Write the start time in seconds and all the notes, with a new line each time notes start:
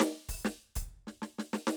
0.00 snare
0.29 open hi-hat, kick
0.40 hi-hat pedal
0.45 snare
0.76 open hi-hat, kick
1.07 snare
1.22 snare
1.39 snare
1.53 snare
1.67 snare